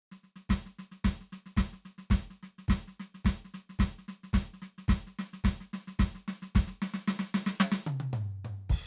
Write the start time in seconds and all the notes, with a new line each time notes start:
0.11 snare
0.23 snare
0.36 snare
0.49 kick, snare
0.66 snare
0.79 snare
0.91 snare
1.04 kick, snare
1.21 snare
1.32 snare
1.46 snare
1.56 kick, snare
1.73 snare
1.85 snare
1.98 snare
2.10 kick, snare
2.30 snare
2.43 snare
2.58 snare
2.68 kick, snare
2.87 snare
2.99 snare
3.14 snare
3.24 kick, snare
3.44 snare
3.54 snare
3.69 snare
3.79 kick, snare
3.98 snare
4.08 snare
4.23 snare
4.33 kick, snare
4.53 snare
4.62 snare
4.78 snare
4.88 kick, snare
5.07 snare
5.19 snare
5.33 snare
5.44 kick, snare
5.60 snare
5.73 snare
5.87 snare
5.99 kick, snare
6.15 snare
6.28 snare
6.42 snare
6.55 kick, snare
6.67 snare
6.82 snare
6.94 snare
7.07 snare
7.19 snare
7.34 snare
7.46 snare
7.60 snare
7.72 snare
7.86 high tom
8.00 high tom
8.13 mid tom
8.44 mid tom
8.69 kick, crash